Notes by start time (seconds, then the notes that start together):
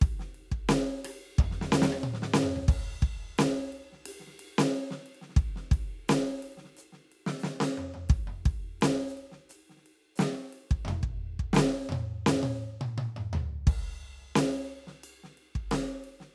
0.02 kick, ride
0.20 snare, hi-hat pedal
0.35 ride
0.52 kick
0.69 snare, ride
1.05 cross-stick, ride
1.39 kick, mid tom
1.52 snare
1.62 snare
1.72 snare
1.82 snare
1.93 cross-stick
2.04 high tom
2.14 snare
2.23 snare
2.34 snare
2.43 mid tom
2.56 floor tom
2.68 kick, crash
3.03 kick
3.39 snare, ride
3.73 ride
3.93 snare
4.06 hi-hat pedal, ride
4.20 snare
4.28 snare
4.33 snare
4.40 ride
4.49 ride
4.59 snare
4.66 hi-hat pedal
4.76 ride
4.91 snare
5.06 ride
5.15 ride
5.22 snare
5.30 snare
5.37 kick, ride
5.56 snare
5.72 kick, ride
6.09 snare, hi-hat pedal, ride
6.43 ride
6.53 ride
6.58 snare
6.65 snare
6.77 hi-hat pedal, ride
6.93 snare
7.12 ride
7.27 snare
7.40 hi-hat pedal
7.44 snare
7.61 snare
7.78 mid tom
7.94 mid tom
8.10 kick, ride
8.28 mid tom
8.46 kick, ride
8.82 snare, hi-hat pedal, ride
9.09 hi-hat pedal
9.18 ride
9.32 snare
9.50 hi-hat pedal, ride
9.70 snare
9.77 snare
9.86 ride
10.16 snare, hi-hat pedal, ride
10.53 ride
10.71 kick
10.85 mid tom
10.88 mid tom
11.03 kick
11.40 kick
11.53 kick, snare
11.57 snare
11.89 mid tom, high tom
12.27 snare
12.43 high tom
12.81 high tom
12.98 high tom
13.17 mid tom
13.33 floor tom
13.67 kick, crash
14.36 snare, ride
14.87 snare
15.04 ride bell
15.24 snare
15.38 ride
15.56 kick
15.71 snare, ride
15.82 snare
16.04 ride
16.21 snare